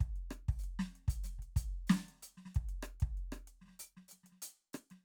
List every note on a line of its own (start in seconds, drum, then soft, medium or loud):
0.01 kick medium
0.01 closed hi-hat soft
0.16 closed hi-hat soft
0.31 cross-stick medium
0.49 kick medium
0.49 open hi-hat soft
0.59 hi-hat pedal soft
0.64 closed hi-hat soft
0.80 snare medium
0.96 closed hi-hat soft
1.08 open hi-hat medium
1.08 kick medium
1.24 snare soft
1.24 hi-hat pedal medium
1.39 kick soft
1.39 closed hi-hat soft
1.57 open hi-hat medium
1.57 kick medium
1.88 snare loud
1.88 hi-hat pedal soft
2.09 closed hi-hat soft
2.23 closed hi-hat medium
2.38 snare soft
2.46 snare soft
2.55 kick medium
2.55 closed hi-hat soft
2.69 closed hi-hat soft
2.83 cross-stick medium
3.01 kick medium
3.01 closed hi-hat soft
3.18 closed hi-hat soft
3.33 cross-stick medium
3.36 cross-stick soft
3.48 closed hi-hat soft
3.62 snare soft
3.66 snare soft
3.68 snare soft
3.80 open hi-hat loud
3.97 snare soft
4.09 closed hi-hat medium
4.09 hi-hat pedal soft
4.13 snare soft
4.24 snare soft
4.24 closed hi-hat soft
4.29 snare soft
4.32 snare soft
4.42 open hi-hat loud
4.74 cross-stick medium
4.74 closed hi-hat medium
4.74 hi-hat pedal medium
4.91 snare soft
4.91 closed hi-hat soft